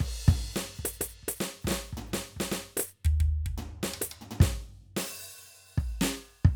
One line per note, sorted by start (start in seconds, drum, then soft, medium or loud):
0.01 kick medium
0.01 crash loud
0.28 kick loud
0.28 floor tom loud
0.54 snare loud
0.54 hi-hat pedal medium
0.76 kick soft
0.76 hi-hat pedal soft
0.85 high tom loud
0.91 hi-hat pedal soft
1.01 kick soft
1.01 hi-hat pedal soft
1.01 high tom loud
1.23 kick soft
1.29 high tom loud
1.41 snare loud
1.62 kick medium
1.62 hi-hat pedal soft
1.67 snare loud
1.71 snare loud
1.86 hi-hat pedal soft
1.93 kick soft
1.97 floor tom loud
2.07 hi-hat pedal soft
2.13 kick soft
2.13 snare loud
2.24 hi-hat pedal soft
2.37 kick soft
2.37 snare loud
2.37 hi-hat pedal soft
2.51 snare loud
2.51 hi-hat pedal soft
2.77 high tom loud
2.80 high tom loud
3.05 mid tom loud
3.21 mid tom loud
3.46 mid tom loud
3.58 floor tom loud
3.83 snare loud
3.94 high tom loud
4.02 high tom loud
4.12 high tom medium
4.21 floor tom medium
4.31 floor tom loud
4.41 kick loud
4.41 snare loud
4.97 open hi-hat loud
4.97 snare loud
5.78 kick medium
6.01 snare loud
6.04 snare loud
6.45 kick loud